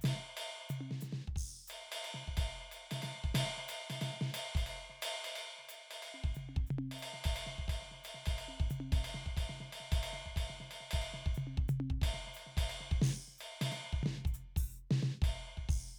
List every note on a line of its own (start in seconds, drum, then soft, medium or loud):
0.01 snare medium
0.01 hi-hat pedal medium
0.05 ride medium
0.37 ride medium
0.69 floor tom medium
0.69 hi-hat pedal medium
0.81 high tom medium
0.91 snare soft
1.01 snare soft
1.01 hi-hat pedal medium
1.12 snare soft
1.27 kick soft
1.36 kick soft
1.36 crash medium
1.67 hi-hat pedal loud
1.67 ride medium
1.92 ride loud
2.04 ride medium
2.14 snare soft
2.27 kick soft
2.37 kick soft
2.37 ride medium
2.71 hi-hat pedal medium
2.71 ride medium
2.91 snare soft
2.91 ride medium
3.02 snare soft
3.02 ride medium
3.24 kick soft
3.34 snare medium
3.34 ride loud
3.57 snare soft
3.68 hi-hat pedal loud
3.68 ride medium
3.90 snare soft
3.90 ride medium
4.01 snare medium
4.01 ride medium
4.21 snare medium
4.34 hi-hat pedal loud
4.34 ride loud
4.55 kick soft
4.55 ride medium
4.66 ride medium
4.89 snare soft
5.02 hi-hat pedal loud
5.02 ride loud
5.24 ride medium
5.35 ride medium
5.58 snare soft
5.69 hi-hat pedal loud
5.69 ride medium
5.91 ride medium
6.02 ride medium
6.14 high tom soft
6.24 kick soft
6.34 floor tom medium
6.34 hi-hat pedal medium
6.49 high tom soft
6.56 kick soft
6.66 floor tom medium
6.66 hi-hat pedal soft
6.78 high tom medium
6.91 ride medium
6.98 hi-hat pedal medium
7.02 ride medium
7.13 snare soft
7.24 kick soft
7.24 ride medium
7.33 hi-hat pedal soft
7.33 ride medium
7.46 snare soft
7.58 kick soft
7.68 kick soft
7.68 ride medium
7.82 snare soft
7.91 snare soft
8.04 hi-hat pedal medium
8.04 ride medium
8.14 snare soft
8.26 kick soft
8.26 ride medium
8.38 ride medium
8.48 high tom soft
8.60 kick soft
8.70 floor tom medium
8.70 hi-hat pedal medium
8.80 high tom medium
8.92 kick medium
8.92 ride medium
9.04 ride medium
9.14 snare soft
9.26 kick soft
9.37 kick soft
9.37 ride medium
9.49 snare soft
9.60 snare soft
9.72 ride medium
9.80 snare soft
9.92 kick medium
9.92 ride medium
10.03 ride medium
10.13 snare soft
10.26 kick soft
10.36 kick soft
10.36 ride medium
10.49 snare soft
10.60 snare soft
10.71 ride medium
10.80 snare soft
10.91 kick soft
10.91 ride loud
11.01 ride medium
11.13 snare soft
11.26 kick soft
11.34 floor tom medium
11.34 hi-hat pedal medium
11.47 high tom soft
11.57 kick soft
11.68 floor tom loud
11.68 hi-hat pedal medium
11.80 high tom medium
11.90 kick soft
12.02 kick soft
12.02 ride loud
12.13 snare soft
12.27 snare soft
12.34 hi-hat pedal medium
12.34 ride medium
12.46 snare soft
12.57 kick soft
12.57 ride loud
12.69 ride medium
12.80 snare soft
12.91 kick soft
13.02 snare medium
13.02 crash medium
13.28 snare soft
13.38 hi-hat pedal medium
13.38 ride medium
13.61 snare medium
13.61 ride loud
13.71 snare soft
13.71 ride medium
13.92 kick soft
14.03 snare medium
14.03 floor tom medium
14.25 kick soft
14.25 open hi-hat soft
14.34 hi-hat pedal medium
14.56 open hi-hat medium
14.56 kick soft
14.91 snare medium
15.03 snare medium
15.22 kick medium
15.22 ride medium
15.57 kick soft
15.69 kick medium
15.69 crash medium